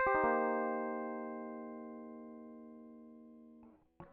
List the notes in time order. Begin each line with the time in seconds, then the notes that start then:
0.00 C5
0.07 G4
0.15 D#4
0.25 A#3
4.07 B3